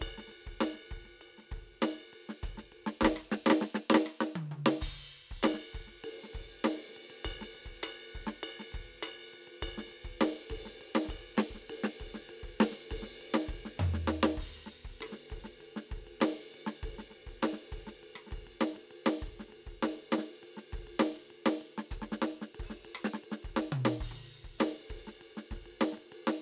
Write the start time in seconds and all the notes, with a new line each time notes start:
0.01 kick, ride bell
0.08 kick
0.12 kick
0.18 snare
0.27 snare, ride
0.46 kick
0.60 snare, hi-hat pedal, ride bell
0.74 snare
0.91 kick, ride
0.97 kick
1.04 snare
1.21 hi-hat pedal, ride bell
1.38 snare
1.42 snare
1.51 kick, ride
1.58 kick
1.81 snare, hi-hat pedal, ride bell
2.13 ride
2.29 snare
2.43 kick, hi-hat pedal, ride bell
2.51 kick
2.54 kick, snare
2.72 ride
2.86 snare
3.01 kick, snare, hi-hat pedal
3.04 snare
3.16 cross-stick
3.31 snare
3.46 snare
3.50 snare
3.61 snare
3.74 snare
3.90 snare
3.94 snare
4.06 cross-stick
4.21 snare
4.35 high tom
4.51 high tom
4.66 snare
4.81 kick, crash
4.88 kick
4.93 kick
5.31 kick
5.43 snare, hi-hat pedal, ride bell
5.54 snare
5.73 kick, ride
5.81 kick
5.87 snare
6.04 hi-hat pedal, ride
6.23 snare
6.33 kick, ride
6.41 kick
6.64 snare, hi-hat pedal, ride
6.88 snare
6.96 ride
7.03 snare
7.10 ride
7.25 kick, hi-hat pedal, ride bell
7.32 kick
7.34 kick
7.41 snare
7.55 ride
7.65 kick
7.83 cross-stick, hi-hat pedal, ride bell
8.13 kick, ride
8.27 snare
8.43 ride bell
8.59 snare
8.72 kick, ride
8.81 kick
9.03 cross-stick, hi-hat pedal, ride bell
9.33 ride
9.47 ride
9.62 kick, ride bell
9.69 kick
9.78 snare
9.86 snare
9.91 ride
10.04 kick
10.10 kick
10.21 snare, hi-hat pedal, ride
10.50 kick, ride
10.57 kick
10.65 snare
10.81 ride
10.95 snare
11.05 kick, snare
11.10 ride bell
11.15 kick
11.34 snare, hi-hat pedal, ride
11.50 kick
11.54 snare
11.70 ride
11.84 snare
12.00 kick, hi-hat pedal, ride
12.14 snare
12.29 ride
12.43 kick
12.60 snare, hi-hat pedal, ride
12.71 snare
12.91 kick, ride
12.99 kick, snare
13.20 hi-hat pedal, ride
13.34 snare
13.48 kick, ride
13.56 kick
13.59 kick
13.65 snare
13.77 floor tom, hi-hat pedal
13.94 snare
14.07 snare
14.23 snare
14.37 kick, crash
14.47 kick
14.56 cross-stick
14.66 snare
14.85 kick
14.90 kick
15.00 kick, cross-stick, hi-hat pedal, ride
15.12 snare
15.30 kick, ride
15.38 kick
15.44 snare
15.60 hi-hat pedal, ride
15.76 snare
15.89 kick, snare, ride
15.98 kick
16.07 ride
16.20 snare, hi-hat pedal, ride
16.51 hi-hat pedal, ride
16.66 snare
16.83 kick, hi-hat pedal, ride
16.90 kick
16.98 snare
17.10 snare, ride
17.26 kick, ride
17.42 snare, hi-hat pedal, ride
17.53 snare
17.72 kick, ride
17.78 kick
17.87 snare
18.03 hi-hat pedal, ride
18.15 cross-stick
18.27 snare
18.31 kick, ride
18.39 kick
18.47 ride
18.61 snare, hi-hat pedal
18.74 snare, ride
18.91 ride
19.06 snare
19.22 kick, ride
19.29 kick
19.39 snare
19.48 snare, ride
19.66 kick
19.82 snare, hi-hat pedal, ride
20.09 snare, hi-hat pedal, ride
20.18 snare
20.43 hi-hat pedal, ride
20.57 snare
20.72 kick, ride
20.80 kick
20.87 ride
20.99 snare, hi-hat pedal
21.16 ride bell
21.30 ride
21.46 snare
21.54 hi-hat pedal
21.61 ride
21.78 snare
21.91 kick, hi-hat pedal, ride
21.98 kick, snare
22.22 snare
22.31 hi-hat pedal, ride bell
22.41 snare
22.55 ride
22.59 kick, hi-hat pedal
22.66 kick, snare
22.85 ride
22.95 cross-stick
23.04 snare
23.14 snare
23.23 ride
23.32 snare
23.43 kick, ride bell
23.53 kick, snare
23.72 mid tom
23.85 snare
24.00 kick, crash
24.08 kick, high tom
24.44 kick
24.58 snare, hi-hat pedal, ride
24.90 kick, ride
25.07 snare
25.21 ride
25.37 snare
25.51 kick, snare, ride
25.58 kick
25.66 ride
25.81 snare, hi-hat pedal
25.92 snare
25.97 ride
26.12 ride
26.27 snare
26.38 hi-hat pedal